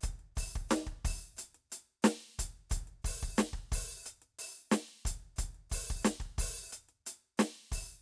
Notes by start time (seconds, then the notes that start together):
0.01 closed hi-hat, kick, hi-hat pedal
0.19 closed hi-hat
0.36 open hi-hat, kick, hi-hat pedal
0.55 kick
0.69 closed hi-hat, snare, hi-hat pedal
0.87 kick, closed hi-hat
1.05 open hi-hat, kick
1.37 closed hi-hat, hi-hat pedal
1.55 closed hi-hat
1.70 closed hi-hat, hi-hat pedal
2.02 closed hi-hat, snare, hi-hat pedal
2.21 closed hi-hat
2.37 closed hi-hat, kick, hi-hat pedal
2.70 closed hi-hat, kick, hi-hat pedal
2.87 closed hi-hat
3.02 open hi-hat, kick, hi-hat pedal
3.23 kick
3.35 closed hi-hat, snare, hi-hat pedal
3.53 kick, closed hi-hat
3.69 kick, hi-hat pedal
3.73 open hi-hat
4.04 closed hi-hat, hi-hat pedal
4.22 closed hi-hat
4.39 open hi-hat
4.71 closed hi-hat, snare, hi-hat pedal
4.88 closed hi-hat
5.05 closed hi-hat, kick
5.36 closed hi-hat, kick, hi-hat pedal
5.55 closed hi-hat
5.70 open hi-hat, kick, hi-hat pedal
5.90 kick
6.02 closed hi-hat, snare, hi-hat pedal
6.20 kick, closed hi-hat
6.38 open hi-hat, kick
6.71 closed hi-hat, hi-hat pedal
6.89 closed hi-hat
7.06 closed hi-hat, hi-hat pedal
7.38 closed hi-hat, snare, hi-hat pedal
7.55 closed hi-hat
7.70 open hi-hat, kick, hi-hat pedal